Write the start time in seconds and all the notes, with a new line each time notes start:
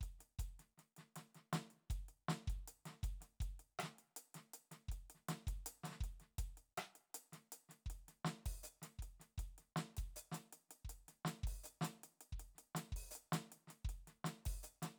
0.01 kick, closed hi-hat
0.19 snare, closed hi-hat
0.39 kick, closed hi-hat
0.59 snare, closed hi-hat
0.78 snare, closed hi-hat
0.97 snare, closed hi-hat
1.16 snare, closed hi-hat
1.35 snare, closed hi-hat
1.53 snare, closed hi-hat
1.70 closed hi-hat
1.90 kick, closed hi-hat
2.08 closed hi-hat
2.28 snare, closed hi-hat
2.48 kick, closed hi-hat
2.68 closed hi-hat
2.85 snare, closed hi-hat
2.89 snare
3.01 kick, snare, closed hi-hat
3.21 snare, closed hi-hat
3.40 kick, closed hi-hat
3.59 closed hi-hat
3.79 cross-stick, closed hi-hat
3.83 snare
3.98 closed hi-hat
4.16 closed hi-hat
4.34 snare, closed hi-hat
4.54 closed hi-hat
4.71 snare, closed hi-hat
4.88 kick, closed hi-hat
5.10 closed hi-hat
5.15 snare
5.29 snare, closed hi-hat
5.47 kick, closed hi-hat
5.66 closed hi-hat
5.84 snare, closed hi-hat
5.87 snare
5.90 snare
6.01 kick, closed hi-hat
6.20 snare, closed hi-hat
6.38 kick, closed hi-hat
6.57 closed hi-hat
6.78 cross-stick, closed hi-hat
6.95 closed hi-hat
7.14 closed hi-hat
7.33 snare, closed hi-hat
7.52 closed hi-hat
7.69 snare, closed hi-hat
7.86 kick
7.90 closed hi-hat
8.08 snare, closed hi-hat
8.25 snare, closed hi-hat
8.46 kick, open hi-hat
8.63 closed hi-hat, hi-hat pedal
8.82 snare, closed hi-hat
8.99 kick, closed hi-hat
9.20 snare, closed hi-hat
9.38 kick, closed hi-hat
9.58 snare, closed hi-hat
9.76 snare, closed hi-hat
9.97 kick, open hi-hat
10.16 hi-hat pedal
10.32 snare, closed hi-hat
10.53 closed hi-hat
10.69 snare, closed hi-hat
10.85 kick
10.89 closed hi-hat
11.08 snare, closed hi-hat
11.25 snare, closed hi-hat
11.43 kick, open hi-hat
11.64 closed hi-hat, hi-hat pedal
11.81 snare, closed hi-hat
12.03 closed hi-hat
12.21 closed hi-hat
12.32 kick
12.40 closed hi-hat
12.55 snare, closed hi-hat
12.75 snare, closed hi-hat
12.92 kick
12.96 open hi-hat
13.11 hi-hat pedal
13.15 closed hi-hat
13.32 snare, closed hi-hat
13.52 closed hi-hat
13.67 snare, closed hi-hat
13.85 kick
13.89 closed hi-hat
14.07 snare, closed hi-hat
14.24 snare, closed hi-hat
14.45 kick, open hi-hat
14.63 closed hi-hat, hi-hat pedal
14.82 snare, closed hi-hat